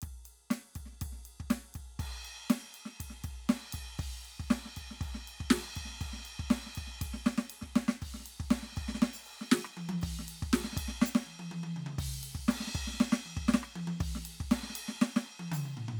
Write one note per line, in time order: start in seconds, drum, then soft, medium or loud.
0.02 kick medium
0.02 ride medium
0.25 ride medium
0.25 percussion soft
0.51 snare loud
0.51 ride medium
0.76 kick medium
0.76 ride medium
0.86 snare soft
0.92 snare soft
1.01 kick medium
1.01 ride medium
1.12 snare soft
1.18 snare soft
1.25 ride medium
1.40 kick medium
1.50 snare loud
1.50 ride loud
1.74 kick soft
1.74 ride medium
1.99 kick medium
1.99 ride medium
2.25 ride medium
2.25 percussion soft
2.50 snare loud
2.50 ride loud
2.74 ride medium
2.74 percussion soft
2.86 snare soft
3.00 kick soft
3.00 ride medium
3.10 snare soft
3.24 kick medium
3.24 ride medium
3.49 snare loud
3.49 ride medium
3.73 kick medium
3.73 ride loud
3.73 percussion soft
3.99 kick medium
3.99 crash medium
4.25 ride soft
4.40 kick medium
4.50 snare loud
4.50 ride medium
4.65 snare soft
4.77 kick soft
4.77 ride medium
4.91 snare soft
5.01 kick medium
5.01 ride medium
5.14 snare soft
5.28 ride medium
5.40 kick medium
5.50 snare loud
5.50 ride loud
5.76 kick medium
5.76 ride medium
5.85 snare soft
5.90 snare soft
5.94 snare soft
6.01 kick medium
6.01 ride medium
6.13 snare soft
6.18 snare soft
6.25 ride medium
6.39 kick medium
6.50 snare loud
6.50 ride medium
6.66 snare soft
6.75 kick medium
6.75 ride medium
6.87 snare soft
6.95 snare soft
7.01 kick medium
7.01 ride loud
7.14 snare medium
7.26 snare loud
7.38 snare loud
7.50 ride medium
7.61 kick soft
7.61 snare soft
7.76 snare loud
7.88 snare loud
8.02 kick medium
8.02 crash medium
8.14 snare soft
8.20 snare soft
8.26 ride medium
8.40 kick medium
8.51 snare loud
8.51 ride medium
8.63 snare soft
8.72 snare soft
8.76 kick medium
8.76 ride medium
8.88 snare medium
8.95 snare medium
9.02 snare loud
9.13 percussion medium
9.26 ride medium
9.41 snare medium
9.52 snare loud
9.65 cross-stick medium
9.77 high tom medium
9.89 high tom loud
10.02 kick medium
10.02 crash medium
10.19 snare soft
10.28 ride medium
10.42 kick medium
10.53 snare loud
10.53 ride loud
10.64 snare medium
10.73 snare soft
10.77 kick medium
10.77 ride loud
10.88 snare medium
11.02 snare loud
11.06 percussion loud
11.15 snare loud
11.27 high tom soft
11.39 high tom medium
11.51 high tom loud
11.63 high tom medium
11.76 mid tom medium
11.86 mid tom loud
11.99 kick medium
11.99 crash medium
12.23 ride medium
12.35 kick medium
12.48 snare loud
12.48 ride loud
12.60 snare medium
12.67 snare medium
12.75 kick medium
12.75 ride medium
12.87 snare medium
12.93 snare soft
13.00 snare loud
13.12 snare loud
13.26 high tom soft
13.37 kick medium
13.48 snare loud
13.54 snare loud
13.63 cross-stick medium
13.76 high tom loud
13.87 high tom loud
14.00 kick medium
14.00 crash medium
14.15 snare medium
14.25 ride medium
14.40 kick medium
14.51 snare loud
14.51 ride loud
14.63 snare soft
14.70 snare soft
14.76 ride loud
14.88 snare medium
15.02 snare loud
15.16 snare loud
15.25 high tom soft
15.39 high tom medium
15.52 mid tom loud
15.52 percussion medium
15.65 mid tom medium
15.77 floor tom medium
15.88 floor tom loud